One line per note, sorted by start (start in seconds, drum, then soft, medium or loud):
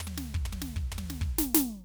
0.04 floor tom medium
0.04 hi-hat pedal medium
0.09 high tom medium
0.18 snare medium
0.34 kick medium
0.45 floor tom medium
0.45 hi-hat pedal soft
0.53 high tom medium
0.62 snare medium
0.76 kick medium
0.91 floor tom medium
0.91 hi-hat pedal soft
0.98 high tom medium
1.10 snare medium
1.21 kick medium
1.38 snare medium
1.55 snare loud